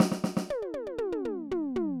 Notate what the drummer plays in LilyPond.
\new DrumStaff \drummode { \time 4/4 \tempo 4 = 120 sn16 sn16 sn16 sn16 tommh16 tommh16 tommh16 tommh16 toml16 toml16 toml8 tomfh8 tomfh8 | }